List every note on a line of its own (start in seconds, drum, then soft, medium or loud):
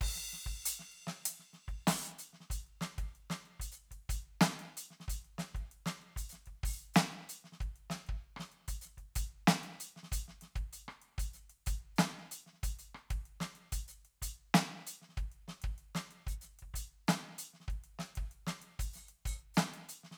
0.01 kick medium
0.01 crash medium
0.16 snare soft
0.33 snare soft
0.46 kick medium
0.66 closed hi-hat loud
0.79 snare soft
0.92 closed hi-hat soft
1.07 snare medium
1.26 closed hi-hat loud
1.39 snare soft
1.53 snare soft
1.53 closed hi-hat soft
1.68 kick soft
1.68 closed hi-hat soft
1.87 open hi-hat loud
1.87 snare loud
2.19 open hi-hat medium
2.19 hi-hat pedal medium
2.33 snare soft
2.40 snare soft
2.50 closed hi-hat medium
2.50 kick medium
2.67 closed hi-hat soft
2.81 snare medium
2.98 kick medium
2.98 closed hi-hat soft
3.15 closed hi-hat soft
3.30 snare medium
3.46 closed hi-hat soft
3.60 open hi-hat medium
3.60 kick soft
3.72 hi-hat pedal medium
3.88 kick soft
3.88 snare soft
3.92 closed hi-hat soft
4.09 open hi-hat medium
4.09 kick medium
4.41 snare loud
4.41 hi-hat pedal medium
4.59 closed hi-hat soft
4.77 closed hi-hat medium
4.91 snare soft
5.00 snare soft
5.08 closed hi-hat medium
5.08 kick medium
5.25 closed hi-hat soft
5.38 snare medium
5.55 kick medium
5.55 closed hi-hat soft
5.72 closed hi-hat soft
5.86 snare medium
6.02 closed hi-hat soft
6.16 open hi-hat medium
6.16 kick soft
6.29 snare soft
6.29 hi-hat pedal medium
6.46 kick soft
6.46 closed hi-hat soft
6.63 open hi-hat medium
6.63 kick medium
6.94 snare loud
6.94 hi-hat pedal medium
7.12 closed hi-hat soft
7.29 closed hi-hat medium
7.44 snare soft
7.52 snare soft
7.61 kick medium
7.61 closed hi-hat soft
7.76 closed hi-hat soft
7.90 snare medium
7.95 snare soft
8.07 kick medium
8.07 closed hi-hat soft
8.24 closed hi-hat soft
8.37 cross-stick medium
8.37 snare medium
8.52 closed hi-hat soft
8.68 open hi-hat medium
8.68 kick medium
8.81 snare soft
8.81 hi-hat pedal medium
8.97 kick soft
8.97 closed hi-hat soft
9.16 open hi-hat medium
9.16 kick medium
9.47 snare loud
9.47 hi-hat pedal medium
9.63 closed hi-hat soft
9.80 closed hi-hat medium
9.96 snare soft
10.03 snare soft
10.12 closed hi-hat medium
10.12 kick medium
10.28 snare soft
10.41 snare soft
10.41 closed hi-hat soft
10.56 kick medium
10.56 closed hi-hat soft
10.73 closed hi-hat medium
10.88 cross-stick medium
11.02 closed hi-hat soft
11.18 open hi-hat medium
11.18 kick medium
11.34 snare soft
11.34 hi-hat pedal soft
11.50 closed hi-hat soft
11.66 closed hi-hat medium
11.66 kick medium
11.96 snare loud
11.96 hi-hat pedal soft
12.01 closed hi-hat soft
12.17 snare soft
12.31 closed hi-hat medium
12.46 snare soft
12.53 snare soft
12.57 snare soft
12.63 closed hi-hat medium
12.63 kick medium
12.79 closed hi-hat soft
12.95 cross-stick medium
13.11 kick medium
13.11 closed hi-hat soft
13.26 closed hi-hat soft
13.41 snare medium
13.55 closed hi-hat soft
13.72 open hi-hat medium
13.72 kick medium
13.88 hi-hat pedal medium
14.05 closed hi-hat soft
14.22 open hi-hat medium
14.22 kick soft
14.54 snare loud
14.54 hi-hat pedal soft
14.87 closed hi-hat medium
15.02 snare soft
15.09 snare soft
15.13 snare soft
15.17 kick medium
15.17 closed hi-hat soft
15.32 closed hi-hat soft
15.48 snare soft
15.62 kick medium
15.62 closed hi-hat soft
15.78 closed hi-hat soft
15.95 snare medium
16.11 closed hi-hat soft
16.27 open hi-hat medium
16.27 kick medium
16.41 snare soft
16.41 hi-hat pedal medium
16.59 kick soft
16.59 closed hi-hat soft
16.74 open hi-hat medium
16.74 kick soft
17.08 snare loud
17.08 closed hi-hat soft
17.08 hi-hat pedal soft
17.27 snare soft
17.38 closed hi-hat medium
17.54 snare soft
17.60 snare soft
17.68 kick medium
17.68 closed hi-hat soft
17.84 closed hi-hat soft
17.99 snare medium
18.16 kick medium
18.16 closed hi-hat soft
18.26 kick soft
18.31 closed hi-hat soft
18.47 snare medium
18.62 closed hi-hat soft
18.79 open hi-hat medium
18.79 kick medium
18.94 snare soft
18.94 hi-hat pedal medium
19.09 closed hi-hat soft
19.26 open hi-hat medium
19.26 kick medium
19.54 snare loud
19.54 hi-hat pedal soft
19.74 closed hi-hat soft
19.89 closed hi-hat medium
20.04 snare soft
20.11 snare soft